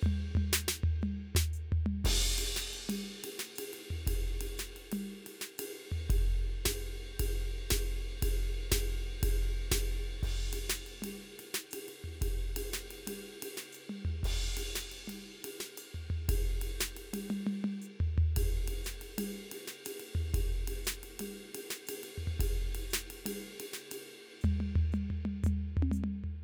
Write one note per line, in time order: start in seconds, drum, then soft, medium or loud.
0.01 floor tom loud
0.01 hi-hat pedal soft
0.06 mid tom loud
0.35 floor tom loud
0.35 mid tom loud
0.53 snare loud
0.53 hi-hat pedal medium
0.68 snare loud
0.83 floor tom loud
1.02 hi-hat pedal soft
1.02 mid tom loud
1.35 snare loud
1.35 floor tom loud
1.53 hi-hat pedal medium
1.72 floor tom loud
1.86 mid tom loud
2.05 kick medium
2.05 ride loud
2.38 ride loud
2.54 snare medium
2.54 hi-hat pedal medium
2.73 ride medium
2.89 mid tom loud
2.89 ride loud
3.24 ride loud
3.39 snare medium
3.56 hi-hat pedal medium
3.56 ride loud
3.73 ride medium
3.90 floor tom medium
4.07 kick medium
4.07 ride loud
4.41 ride loud
4.58 snare medium
4.58 hi-hat pedal medium
4.76 ride medium
4.92 mid tom loud
4.92 ride medium
5.07 hi-hat pedal soft
5.26 ride medium
5.41 snare medium
5.58 hi-hat pedal medium
5.58 ride loud
5.92 floor tom medium
6.10 kick medium
6.10 ride loud
6.65 kick medium
6.65 snare loud
6.65 ride loud
7.20 kick medium
7.20 ride loud
7.71 kick medium
7.71 snare loud
7.71 ride loud
8.22 kick medium
8.22 ride loud
8.72 kick medium
8.72 snare loud
8.72 ride loud
9.23 kick medium
9.23 ride loud
9.51 ride soft
9.59 ride soft
9.72 kick medium
9.72 snare loud
9.72 ride loud
10.23 kick medium
10.23 ride medium
10.53 ride loud
10.70 snare loud
10.70 hi-hat pedal medium
10.86 ride soft
11.02 mid tom medium
11.02 ride loud
11.39 ride medium
11.54 snare medium
11.71 hi-hat pedal medium
11.71 ride loud
11.88 ride medium
12.04 floor tom medium
12.20 kick medium
12.20 hi-hat pedal soft
12.20 ride loud
12.56 ride loud
12.73 snare medium
12.73 hi-hat pedal medium
12.91 ride medium
13.07 mid tom medium
13.07 ride loud
13.42 ride loud
13.57 snare medium
13.73 hi-hat pedal medium
13.73 ride bell soft
13.90 mid tom medium
14.05 floor tom loud
14.23 kick medium
14.23 ride medium
14.57 ride loud
14.75 snare medium
14.75 hi-hat pedal medium
14.92 ride medium
15.08 mid tom medium
15.08 ride medium
15.44 ride loud
15.60 snare medium
15.77 hi-hat pedal medium
15.77 ride bell medium
15.94 floor tom medium
16.10 floor tom loud
16.29 kick medium
16.29 ride loud
16.47 ride soft
16.62 ride medium
16.80 snare loud
16.80 hi-hat pedal medium
16.97 ride medium
17.13 mid tom loud
17.13 ride loud
17.29 hi-hat pedal soft
17.29 mid tom loud
17.47 mid tom loud
17.64 mid tom loud
17.82 hi-hat pedal medium
18.00 floor tom loud
18.18 floor tom loud
18.36 kick medium
18.36 ride loud
18.68 ride medium
18.85 snare medium
18.85 hi-hat pedal medium
19.01 ride medium
19.18 mid tom loud
19.18 ride loud
19.52 ride medium
19.67 snare medium
19.85 hi-hat pedal medium
19.85 ride loud
20.00 ride medium
20.15 floor tom loud
20.34 kick medium
20.34 ride loud
20.68 ride loud
20.85 snare medium
20.85 hi-hat pedal medium
21.03 ride medium
21.19 mid tom medium
21.19 ride loud
21.35 hi-hat pedal soft
21.55 ride loud
21.70 snare medium
21.87 hi-hat pedal medium
21.87 ride loud
22.03 ride medium
22.18 floor tom medium
22.27 floor tom medium
22.40 kick medium
22.40 ride loud
22.75 ride medium
22.90 snare loud
22.90 hi-hat pedal medium
23.10 ride medium
23.26 mid tom medium
23.26 ride loud
23.39 hi-hat pedal soft
23.60 ride loud
23.73 snare medium
23.91 hi-hat pedal medium
23.91 ride loud
24.41 floor tom loud
24.41 hi-hat pedal medium
24.41 mid tom loud
24.60 mid tom loud
24.76 floor tom loud
24.92 hi-hat pedal soft
24.92 mid tom loud
25.10 floor tom medium
25.25 mid tom loud
25.44 floor tom loud
25.44 hi-hat pedal medium
25.44 mid tom loud
25.77 floor tom loud
25.83 high tom loud
25.92 hi-hat pedal medium
25.92 mid tom loud
26.04 mid tom loud
26.24 floor tom medium